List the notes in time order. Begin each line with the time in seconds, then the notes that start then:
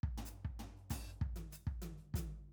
0.03 kick
0.17 floor tom
0.25 hi-hat pedal
0.45 kick
0.59 floor tom
0.76 snare
0.90 kick, floor tom, hi-hat pedal
1.11 snare
1.21 kick
1.36 high tom
1.50 snare, hi-hat pedal
1.67 kick
1.82 high tom
1.97 snare
2.14 kick, hi-hat pedal, high tom